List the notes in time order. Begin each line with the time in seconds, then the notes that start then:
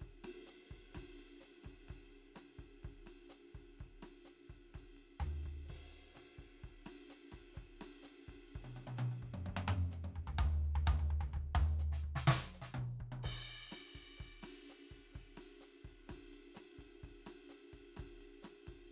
0.01 kick, ride
0.08 kick
0.25 cross-stick, ride
0.47 hi-hat pedal
0.71 kick
0.76 kick
0.92 cross-stick, snare, hi-hat pedal, ride
0.97 kick
1.03 kick
1.20 ride
1.41 hi-hat pedal, ride
1.64 kick, cross-stick, ride
1.72 kick
1.86 snare, hi-hat pedal, ride
1.91 kick
1.96 kick
2.11 ride
2.36 cross-stick, hi-hat pedal, ride
2.59 kick, ride
2.64 kick, snare
2.79 hi-hat pedal
2.84 kick, ride
2.91 kick
3.07 cross-stick, ride
3.30 hi-hat pedal, ride
3.55 kick, ride
3.61 kick
3.80 kick, ride
3.87 kick
4.03 cross-stick, ride
4.26 hi-hat pedal, ride
4.50 kick, ride
4.55 kick
4.70 hi-hat pedal
4.75 kick, snare, ride
4.81 kick
4.97 ride
5.20 floor tom, hi-hat pedal, ride
5.44 kick, ride
5.51 kick
5.66 hi-hat pedal, ride
5.70 kick, snare
5.76 kick
5.93 ride
6.15 snare, hi-hat pedal, ride
6.39 kick, ride
6.44 kick
6.60 hi-hat pedal
6.64 kick, ride
6.69 kick
6.87 cross-stick, ride
7.10 hi-hat pedal, ride
7.32 kick, cross-stick, ride
7.39 kick
7.55 kick, hi-hat pedal, ride
7.62 kick, snare
7.81 cross-stick, snare, ride
8.04 hi-hat pedal, ride
8.29 kick, ride
8.34 kick
8.55 kick, ride
8.62 kick, high tom
8.77 high tom
8.88 high tom
8.98 hi-hat pedal, high tom
9.12 high tom
9.23 kick, mid tom
9.28 kick
9.34 mid tom
9.47 kick, mid tom
9.55 kick, mid tom
9.69 mid tom
9.82 mid tom
9.92 hi-hat pedal, mid tom
10.05 mid tom
10.16 kick, floor tom
10.22 kick
10.28 floor tom
10.39 kick, floor tom
10.54 floor tom
10.66 floor tom
10.76 floor tom
10.86 hi-hat pedal, floor tom
11.00 floor tom
11.11 kick, floor tom
11.17 kick
11.21 floor tom
11.29 hi-hat pedal
11.34 kick, floor tom
11.56 floor tom
11.80 hi-hat pedal
11.93 snare
12.04 kick
12.09 kick
12.16 snare
12.28 kick, snare
12.43 snare
12.55 hi-hat pedal
12.62 snare
12.75 kick, high tom
12.83 kick
13.00 kick, high tom
13.07 kick
13.13 high tom
13.24 kick, crash
13.32 kick
13.72 cross-stick, snare, hi-hat pedal, ride
13.96 kick, ride
14.01 kick
14.18 kick, hi-hat pedal, ride
14.26 kick
14.43 cross-stick, snare, ride
14.70 hi-hat pedal
14.92 kick
14.97 kick
15.13 kick, hi-hat pedal
15.21 kick
15.37 cross-stick, snare, ride
15.61 hi-hat pedal
15.85 kick
15.90 kick
16.08 kick, cross-stick, snare, hi-hat pedal, ride
16.17 kick
16.34 ride
16.55 cross-stick, hi-hat pedal, ride
16.79 kick, ride
16.99 hi-hat pedal
17.04 kick, ride
17.09 kick
17.27 cross-stick, ride
17.50 hi-hat pedal, ride
17.74 kick, ride
17.94 cross-stick, snare, hi-hat pedal, ride
18.00 kick
18.05 kick
18.21 ride
18.43 cross-stick, snare, hi-hat pedal, ride
18.68 kick, ride
18.74 kick